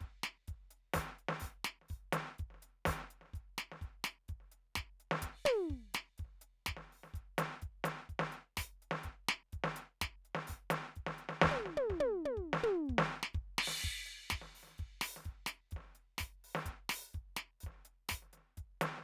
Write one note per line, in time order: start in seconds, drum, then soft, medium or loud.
0.01 kick soft
0.01 closed hi-hat soft
0.24 open hi-hat medium
0.24 snare medium
0.48 closed hi-hat soft
0.48 kick soft
0.48 snare soft
0.71 open hi-hat soft
0.94 open hi-hat medium
0.94 kick soft
0.94 snare medium
1.19 closed hi-hat soft
1.29 snare medium
1.40 open hi-hat medium
1.40 kick soft
1.65 open hi-hat medium
1.65 snare medium
1.82 snare soft
1.89 kick soft
1.89 open hi-hat soft
2.13 closed hi-hat loud
2.13 snare medium
2.39 closed hi-hat soft
2.39 kick soft
2.51 snare soft
2.55 snare soft
2.63 open hi-hat medium
2.86 open hi-hat medium
2.86 kick soft
2.86 snare medium
3.01 snare soft
3.11 open hi-hat soft
3.22 snare soft
3.26 snare soft
3.34 kick soft
3.34 closed hi-hat soft
3.58 open hi-hat medium
3.58 snare medium
3.72 snare soft
3.82 kick soft
3.82 closed hi-hat soft
4.04 open hi-hat medium
4.04 snare medium
4.29 closed hi-hat soft
4.29 kick soft
4.41 snare soft
4.52 closed hi-hat soft
4.76 closed hi-hat medium
4.76 kick soft
4.76 snare medium
5.00 open hi-hat soft
5.12 snare medium
5.22 closed hi-hat loud
5.22 kick soft
5.31 crash soft
5.45 snare loud
5.45 high tom loud
5.70 kick soft
5.94 closed hi-hat loud
5.94 snare loud
6.18 open hi-hat soft
6.18 kick soft
6.25 snare soft
6.42 closed hi-hat medium
6.67 closed hi-hat medium
6.67 kick soft
6.67 snare medium
6.77 snare soft
6.93 open hi-hat soft
7.04 snare soft
7.14 closed hi-hat soft
7.14 kick soft
7.38 open hi-hat loud
7.38 snare medium
7.62 closed hi-hat soft
7.62 kick soft
7.84 closed hi-hat medium
7.84 snare medium
8.09 kick soft
8.09 closed hi-hat soft
8.20 snare medium
8.32 open hi-hat soft
8.57 open hi-hat medium
8.57 kick soft
8.57 snare medium
8.82 open hi-hat soft
8.91 snare medium
9.04 kick soft
9.04 closed hi-hat medium
9.29 snare loud
9.53 kick soft
9.53 closed hi-hat soft
9.64 snare medium
9.76 open hi-hat medium
10.02 closed hi-hat loud
10.02 kick soft
10.02 snare medium
10.25 closed hi-hat soft
10.35 snare medium
10.48 open hi-hat medium
10.48 kick soft
10.71 closed hi-hat medium
10.71 snare medium
10.85 snare soft
10.96 kick soft
10.96 closed hi-hat soft
11.07 snare medium
11.18 open hi-hat soft
11.29 snare soft
11.42 kick soft
11.42 snare loud
11.51 high tom medium
11.66 snare soft
11.77 high tom loud
11.90 kick soft
11.90 snare soft
12.00 high tom loud
12.25 high tom medium
12.37 kick soft
12.53 snare medium
12.63 mid tom loud
12.85 hi-hat pedal soft
12.90 kick soft
12.99 snare loud
13.23 snare medium
13.33 kick soft
13.33 hi-hat pedal soft
13.59 snare loud
13.59 crash loud
13.68 snare soft
13.83 closed hi-hat soft
13.83 kick soft
14.06 open hi-hat soft
14.30 closed hi-hat loud
14.30 kick soft
14.30 snare loud
14.42 snare soft
14.55 open hi-hat soft
14.63 snare soft
14.68 snare soft
14.72 snare soft
14.78 kick soft
14.78 open hi-hat soft
15.02 open hi-hat medium
15.02 snare medium
15.17 snare soft
15.25 open hi-hat soft
15.25 kick soft
15.47 open hi-hat loud
15.47 snare medium
15.71 open hi-hat soft
15.71 kick soft
15.77 snare soft
15.81 snare soft
15.85 snare soft
15.95 open hi-hat soft
16.18 open hi-hat medium
16.18 kick soft
16.18 snare medium
16.44 open hi-hat soft
16.55 snare medium
16.66 closed hi-hat medium
16.66 kick soft
16.90 open hi-hat medium
16.90 snare loud
17.14 kick soft
17.14 closed hi-hat soft
17.37 open hi-hat loud
17.37 snare medium
17.61 open hi-hat soft
17.61 kick soft
17.67 snare soft
17.72 snare soft
17.75 snare soft
17.85 closed hi-hat medium
18.09 open hi-hat loud
18.09 kick soft
18.09 snare medium
18.23 snare soft
18.33 closed hi-hat soft
18.33 snare soft
18.38 snare soft
18.58 closed hi-hat soft
18.58 kick soft
18.82 open hi-hat medium
18.82 snare medium
18.98 snare soft